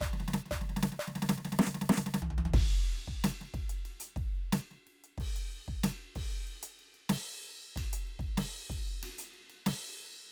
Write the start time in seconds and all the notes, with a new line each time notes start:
0.01 kick, percussion
0.13 snare
0.20 snare
0.28 snare
0.34 snare
0.46 snare
0.51 kick, percussion
0.61 snare
0.69 snare
0.77 snare
0.83 snare
0.92 snare
0.99 percussion
1.08 snare
1.15 snare
1.22 snare
1.29 snare
1.38 snare
1.43 kick, snare
1.52 snare
1.59 snare
1.67 snare
1.75 snare
1.81 snare
1.90 snare
1.98 snare
2.06 snare
2.14 snare
2.22 floor tom
2.31 floor tom
2.38 floor tom
2.45 floor tom
2.54 kick, ride
3.08 kick
3.24 snare, ride bell
3.41 snare
3.54 kick, ride
3.70 closed hi-hat
3.85 ride bell
4.00 closed hi-hat
4.16 kick, ride
4.35 ride
4.53 snare, ride bell
4.71 snare
4.87 ride
5.04 closed hi-hat
5.18 kick, crash
5.36 closed hi-hat
5.51 ride
5.66 kick, ride
5.84 snare, ride bell
6.16 kick, crash
6.30 closed hi-hat
6.47 ride
6.63 closed hi-hat
6.79 ride bell
6.94 ride bell
7.10 snare, crash
7.45 ride
7.62 closed hi-hat
7.76 kick, ride bell
7.93 closed hi-hat
8.07 closed hi-hat, ride
8.19 kick, ride
8.38 snare, crash
8.70 kick, ride
8.87 closed hi-hat
9.03 ride
9.18 closed hi-hat
9.34 ride
9.50 ride bell
9.66 snare, crash
10.01 ride
10.19 closed hi-hat